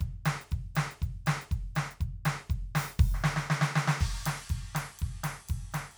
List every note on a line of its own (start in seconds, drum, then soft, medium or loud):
0.01 closed hi-hat medium
0.01 kick medium
0.26 closed hi-hat loud
0.26 snare loud
0.42 closed hi-hat medium
0.52 closed hi-hat medium
0.52 kick medium
0.76 closed hi-hat loud
0.76 snare loud
0.91 closed hi-hat medium
1.02 closed hi-hat medium
1.02 kick medium
1.27 closed hi-hat loud
1.27 snare loud
1.42 closed hi-hat medium
1.52 closed hi-hat medium
1.52 kick medium
1.76 closed hi-hat medium
1.76 snare loud
1.91 closed hi-hat medium
2.01 kick medium
2.26 closed hi-hat loud
2.26 snare loud
2.50 closed hi-hat medium
2.50 kick medium
2.76 open hi-hat loud
2.76 snare loud
2.99 open hi-hat medium
2.99 kick loud
3.15 snare soft
3.24 snare loud
3.37 snare loud
3.50 snare loud
3.62 snare loud
3.76 snare loud
3.88 snare loud
4.00 kick medium
4.00 hi-hat pedal medium
4.00 crash medium
4.26 snare loud
4.26 ride loud
4.50 kick medium
4.50 ride medium
4.75 snare medium
4.75 ride loud
4.99 kick medium
4.99 ride medium
5.24 snare medium
5.24 ride loud
5.48 kick medium
5.48 hi-hat pedal soft
5.48 ride medium
5.72 snare medium
5.72 hi-hat pedal soft
5.72 ride medium
5.92 ride soft